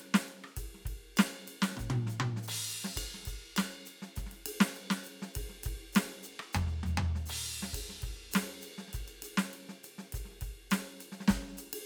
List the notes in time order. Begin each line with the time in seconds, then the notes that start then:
0.01 ride
0.15 snare
0.24 hi-hat pedal
0.29 ride
0.45 cross-stick
0.57 kick, hi-hat pedal, ride
0.75 snare
0.82 snare
0.86 kick, ride
0.95 kick
1.17 snare, hi-hat pedal, ride bell
1.48 hi-hat pedal, ride
1.63 snare
1.72 snare
1.78 kick, hi-hat pedal, mid tom
1.84 snare
1.91 mid tom
2.07 snare, hi-hat pedal
2.21 mid tom
2.37 snare
2.44 hi-hat pedal
2.49 crash
2.69 hi-hat pedal
2.85 snare
2.97 kick, hi-hat pedal, ride bell
3.15 snare
3.24 snare, hi-hat pedal, ride
3.28 kick
3.57 snare, hi-hat pedal, ride bell
3.86 hi-hat pedal, ride
4.03 snare
4.17 kick, snare, hi-hat pedal, ride
4.26 kick, snare
4.32 snare, ride
4.47 hi-hat pedal, ride
4.61 snare
4.75 hi-hat pedal, ride
4.91 snare
5.04 hi-hat pedal, ride
5.23 snare
5.35 kick, hi-hat pedal, ride
5.46 kick
5.50 snare
5.55 snare
5.64 kick, hi-hat pedal, ride
5.73 kick
5.93 snare, hi-hat pedal, ride
6.05 snare
6.24 hi-hat pedal, ride
6.40 cross-stick
6.54 kick, hi-hat pedal, floor tom
6.67 snare
6.79 snare
6.83 snare, floor tom
6.87 hi-hat pedal
6.98 floor tom
7.16 snare
7.26 hi-hat pedal, crash
7.31 snare
7.34 snare
7.63 snare
7.74 kick, hi-hat pedal, ride
7.90 snare
7.96 snare
8.01 kick, snare, hi-hat pedal, ride
8.12 kick
8.32 snare, hi-hat pedal, ride
8.62 hi-hat pedal, ride
8.79 snare
8.89 snare
8.93 kick, hi-hat pedal, ride
8.98 cross-stick
9.09 ride bell
9.23 hi-hat pedal, ride
9.38 snare
9.53 hi-hat pedal, ride
9.70 snare
9.84 hi-hat pedal, ride
9.99 snare
10.13 kick, hi-hat pedal, ride
10.26 snare
10.32 snare
10.37 snare
10.42 kick, hi-hat pedal, ride
10.71 snare, hi-hat pedal, ride
10.83 snare
11.01 hi-hat pedal, ride
11.13 snare
11.21 snare
11.29 kick, snare, hi-hat pedal
11.37 kick
11.39 kick, snare
11.49 snare
11.53 snare
11.58 snare, hi-hat pedal, ride
11.67 snare
11.74 ride